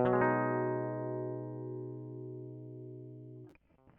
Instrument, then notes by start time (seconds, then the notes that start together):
electric guitar
0.00 B2
0.06 F#3
0.14 G#3
0.22 D#4